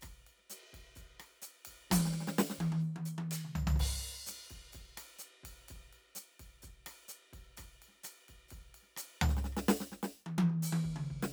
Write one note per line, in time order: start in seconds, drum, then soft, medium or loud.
0.01 kick soft
0.01 cross-stick soft
0.01 snare soft
0.01 hi-hat pedal soft
0.01 ride medium
0.27 ride soft
0.38 snare soft
0.50 snare soft
0.50 hi-hat pedal medium
0.50 ride soft
0.73 kick soft
0.73 ride soft
0.78 kick soft
0.95 kick soft
0.95 hi-hat pedal soft
0.95 ride soft
1.01 kick soft
1.19 cross-stick soft
1.19 snare soft
1.19 ride medium
1.42 hi-hat pedal medium
1.42 ride medium
1.65 kick soft
1.65 ride medium
1.91 kick soft
1.91 hi-hat pedal loud
1.91 high tom loud
1.97 kick soft
1.97 snare soft
2.06 snare soft
2.13 snare soft
2.21 snare soft
2.27 snare medium
2.38 snare loud
2.50 snare medium
2.57 kick soft
2.57 high tom loud
2.72 high tom medium
2.80 hi-hat pedal soft
2.96 high tom medium
3.05 hi-hat pedal medium
3.18 high tom medium
3.31 closed hi-hat medium
3.31 hi-hat pedal medium
3.45 mid tom soft
3.55 floor tom medium
3.67 floor tom loud
3.76 kick soft
3.76 floor tom soft
3.76 crash loud
4.26 snare soft
4.26 hi-hat pedal medium
4.26 ride medium
4.50 kick soft
4.50 ride soft
4.56 kick soft
4.72 kick soft
4.72 hi-hat pedal soft
4.72 ride medium
4.80 kick soft
4.97 cross-stick soft
4.97 snare soft
4.97 ride medium
5.19 hi-hat pedal medium
5.44 kick soft
5.44 ride medium
5.68 kick soft
5.68 hi-hat pedal soft
5.68 ride medium
5.76 kick soft
5.93 ride soft
6.15 snare soft
6.15 hi-hat pedal medium
6.15 ride medium
6.40 kick soft
6.40 ride soft
6.62 kick soft
6.62 hi-hat pedal soft
6.62 ride soft
6.69 kick soft
6.86 cross-stick medium
6.86 snare soft
6.86 ride medium
7.08 hi-hat pedal medium
7.08 ride soft
7.33 kick soft
7.33 ride soft
7.38 kick soft
7.57 kick soft
7.57 cross-stick soft
7.57 snare soft
7.57 hi-hat pedal soft
7.57 ride medium
7.64 kick soft
7.82 ride soft
7.88 snare soft
7.93 snare soft
8.04 cross-stick soft
8.04 snare soft
8.04 hi-hat pedal medium
8.04 ride medium
8.28 kick soft
8.28 ride soft
8.48 kick soft
8.48 hi-hat pedal soft
8.48 ride soft
8.57 kick soft
8.74 ride soft
8.83 snare soft
8.96 cross-stick medium
8.96 snare soft
8.96 hi-hat pedal medium
8.96 ride medium
9.21 floor tom loud
9.29 snare soft
9.37 snare soft
9.44 snare soft
9.53 cross-stick soft
9.57 snare medium
9.68 kick soft
9.68 snare loud
9.80 snare medium
9.90 kick soft
9.90 snare soft
10.03 snare medium
10.26 high tom medium
10.38 high tom loud
10.50 high tom soft
10.63 hi-hat pedal medium
10.63 high tom soft
10.73 high tom loud
10.84 kick soft
10.90 kick soft
10.96 mid tom medium
11.10 kick soft
11.16 kick soft
11.23 snare medium